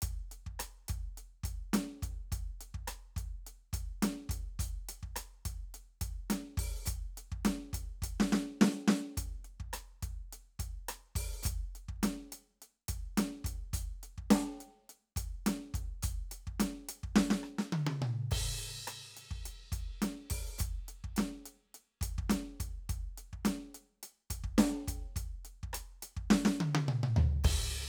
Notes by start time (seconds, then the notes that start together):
0.03 kick, closed hi-hat
0.31 closed hi-hat
0.46 kick
0.59 cross-stick, closed hi-hat
0.88 kick, closed hi-hat
1.17 closed hi-hat
1.43 kick, closed hi-hat
1.73 snare, closed hi-hat
2.02 kick, closed hi-hat
2.32 kick, closed hi-hat
2.61 closed hi-hat
2.74 kick
2.87 cross-stick, closed hi-hat
3.16 kick, closed hi-hat
3.46 closed hi-hat
3.73 kick, closed hi-hat
4.02 snare, closed hi-hat
4.29 kick, closed hi-hat
4.59 closed hi-hat, kick
4.89 closed hi-hat
5.03 kick
5.16 cross-stick, closed hi-hat
5.45 kick, closed hi-hat
5.51 kick
5.74 closed hi-hat
6.01 kick, closed hi-hat
6.30 snare, closed hi-hat
6.57 kick, open hi-hat
6.85 kick, closed hi-hat, hi-hat pedal
7.17 closed hi-hat
7.32 kick
7.45 snare, closed hi-hat
7.73 kick, closed hi-hat
8.02 kick, closed hi-hat
8.20 snare
8.32 snare
8.61 snare
8.88 snare
9.17 kick, closed hi-hat
9.44 closed hi-hat
9.60 kick
9.73 cross-stick, closed hi-hat
10.02 kick, closed hi-hat
10.33 closed hi-hat
10.59 kick, closed hi-hat
10.88 cross-stick, closed hi-hat
11.15 kick, open hi-hat
11.43 kick, closed hi-hat, hi-hat pedal
11.75 closed hi-hat
11.88 kick
11.96 kick
12.03 snare, closed hi-hat
12.32 closed hi-hat
12.62 closed hi-hat
12.88 kick, closed hi-hat
13.17 snare, closed hi-hat
13.44 kick, closed hi-hat
13.73 closed hi-hat, kick
14.03 closed hi-hat
14.18 kick
14.30 snare, closed hi-hat
14.60 closed hi-hat
14.89 closed hi-hat
15.16 kick, closed hi-hat
15.46 snare, closed hi-hat
15.74 kick, closed hi-hat
16.03 closed hi-hat, kick
16.31 closed hi-hat
16.47 kick
16.60 snare, closed hi-hat
16.89 closed hi-hat
17.03 kick
17.16 snare
17.30 snare
17.43 cross-stick
17.58 snare
17.72 high tom
17.87 high tom
18.02 mid tom
18.31 kick, crash
18.58 closed hi-hat
18.87 cross-stick, closed hi-hat
19.17 closed hi-hat
19.31 kick
19.45 closed hi-hat
19.72 kick, closed hi-hat
20.02 snare, closed hi-hat
20.30 kick, open hi-hat
20.58 kick, closed hi-hat, hi-hat pedal
20.88 closed hi-hat
21.04 kick
21.16 snare, closed hi-hat
21.45 closed hi-hat
21.74 closed hi-hat
22.01 kick, closed hi-hat
22.18 kick
22.30 snare, closed hi-hat
22.60 kick, closed hi-hat
22.89 kick, closed hi-hat
23.18 closed hi-hat
23.33 kick
23.45 snare, closed hi-hat
23.74 closed hi-hat
24.03 closed hi-hat
24.30 kick, closed hi-hat
24.44 kick
24.58 snare, closed hi-hat
24.88 kick, closed hi-hat
25.16 kick, closed hi-hat
25.45 closed hi-hat
25.63 kick
25.73 cross-stick, closed hi-hat
26.02 closed hi-hat
26.16 kick
26.30 snare
26.45 snare
26.60 high tom
26.75 high tom
26.88 mid tom
27.03 mid tom
27.16 floor tom
27.44 kick, crash, ride